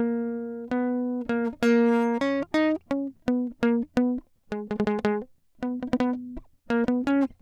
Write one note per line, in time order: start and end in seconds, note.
0.00 0.70 A#3
0.72 1.28 B3
1.30 1.58 A#3
1.64 2.23 A#3
2.22 2.48 C#4
2.55 2.80 D#4
2.92 3.17 C#4
3.29 3.55 B3
3.64 3.89 A#3
3.98 4.22 B3
4.53 4.67 G#3
4.72 4.79 G#3
4.81 4.88 G#3
4.88 5.03 G#3
5.05 5.27 G#3
5.63 5.83 B3
5.84 5.92 C4
5.94 6.02 C4
6.02 6.16 B3
6.71 6.87 A#3
6.89 7.06 B3
7.08 7.30 C#4